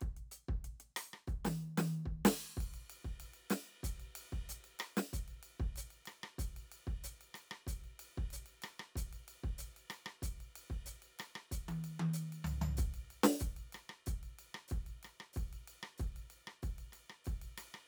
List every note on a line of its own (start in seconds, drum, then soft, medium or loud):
0.01 kick medium
0.01 closed hi-hat soft
0.17 closed hi-hat soft
0.32 closed hi-hat medium
0.49 kick medium
0.65 closed hi-hat soft
0.80 closed hi-hat soft
0.97 cross-stick medium
0.97 open hi-hat medium
1.14 cross-stick medium
1.28 kick medium
1.28 hi-hat pedal soft
1.45 snare medium
1.45 high tom medium
1.78 snare medium
1.78 high tom medium
2.06 kick medium
2.25 snare loud
2.25 crash medium
2.57 kick medium
2.57 ride medium
2.74 ride soft
2.90 ride medium
3.05 kick soft
3.20 ride medium
3.34 ride soft
3.50 snare medium
3.50 ride medium
3.84 kick medium
3.84 hi-hat pedal medium
3.84 ride soft
4.00 ride soft
4.16 ride medium
4.33 kick medium
4.49 hi-hat pedal medium
4.49 ride soft
4.64 ride soft
4.79 cross-stick medium
4.79 ride medium
4.97 snare medium
5.13 kick medium
5.13 hi-hat pedal medium
5.13 ride soft
5.28 ride soft
5.43 ride medium
5.60 kick medium
5.76 hi-hat pedal medium
5.76 ride soft
5.91 ride soft
6.06 cross-stick medium
6.06 ride soft
6.24 cross-stick medium
6.39 kick medium
6.39 hi-hat pedal medium
6.39 ride soft
6.57 ride soft
6.72 ride medium
6.87 kick medium
7.04 hi-hat pedal medium
7.04 ride soft
7.21 ride soft
7.35 cross-stick medium
7.35 ride medium
7.51 cross-stick medium
7.67 kick medium
7.67 hi-hat pedal medium
7.67 ride soft
7.84 ride soft
8.00 ride medium
8.18 kick medium
8.31 hi-hat pedal medium
8.31 ride soft
8.46 ride soft
8.62 cross-stick medium
8.62 ride medium
8.80 cross-stick medium
8.96 kick medium
8.96 hi-hat pedal medium
8.96 ride soft
9.13 ride soft
9.28 ride medium
9.44 kick medium
9.59 hi-hat pedal medium
9.59 ride soft
9.77 ride soft
9.90 cross-stick medium
9.90 ride soft
10.06 cross-stick medium
10.22 kick medium
10.22 hi-hat pedal medium
10.22 ride soft
10.41 ride soft
10.56 ride medium
10.70 kick medium
10.86 hi-hat pedal medium
10.86 ride soft
11.02 ride soft
11.19 cross-stick medium
11.19 ride medium
11.36 cross-stick medium
11.52 kick medium
11.52 hi-hat pedal medium
11.52 ride soft
11.69 high tom medium
11.69 ride soft
11.84 ride medium
12.00 high tom medium
12.14 hi-hat pedal medium
12.14 ride soft
12.33 ride soft
12.45 floor tom medium
12.45 ride medium
12.62 floor tom medium
12.77 kick medium
12.77 hi-hat pedal medium
12.77 ride soft
12.94 ride soft
13.11 ride soft
13.24 snare loud
13.40 kick medium
13.40 hi-hat pedal medium
13.40 ride soft
13.57 ride soft
13.73 cross-stick medium
13.73 ride soft
13.90 cross-stick medium
14.06 kick medium
14.06 hi-hat pedal medium
14.06 ride soft
14.23 ride soft
14.39 ride medium
14.55 cross-stick medium
14.68 kick medium
14.68 hi-hat pedal soft
14.68 ride soft
14.87 ride soft
15.03 cross-stick soft
15.03 ride soft
15.20 cross-stick medium
15.33 kick medium
15.33 hi-hat pedal soft
15.38 ride soft
15.53 ride soft
15.68 ride medium
15.83 cross-stick medium
15.98 kick medium
15.98 hi-hat pedal soft
15.98 ride soft
16.16 ride soft
16.30 cross-stick soft
16.30 ride soft
16.47 cross-stick medium
16.63 kick medium
16.63 hi-hat pedal soft
16.63 ride soft
16.79 ride soft
16.93 cross-stick soft
16.93 ride soft
17.10 cross-stick soft
17.25 kick medium
17.25 hi-hat pedal soft
17.25 ride soft
17.42 ride soft
17.58 cross-stick medium
17.58 ride medium
17.74 cross-stick medium